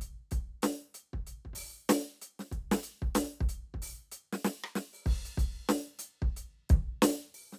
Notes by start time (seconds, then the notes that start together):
0.01 closed hi-hat
0.31 closed hi-hat, kick
0.62 closed hi-hat, snare
0.94 closed hi-hat
1.13 kick
1.27 closed hi-hat
1.45 kick
1.53 open hi-hat, kick
1.89 open hi-hat, snare, hi-hat pedal
2.22 closed hi-hat
2.39 snare
2.52 kick, open hi-hat
2.72 snare
2.77 snare
2.83 closed hi-hat
3.02 kick
3.15 closed hi-hat, snare
3.23 snare
3.41 kick
3.49 closed hi-hat
3.74 kick
3.82 open hi-hat
4.12 closed hi-hat
4.33 snare
4.45 snare
4.64 cross-stick
4.76 snare
4.93 open hi-hat
5.06 kick, crash
5.25 closed hi-hat
5.38 closed hi-hat, kick
5.69 snare
5.99 closed hi-hat
6.22 kick
6.37 closed hi-hat
6.69 kick, closed hi-hat
7.02 closed hi-hat, snare
7.34 open hi-hat
7.43 open hi-hat
7.53 snare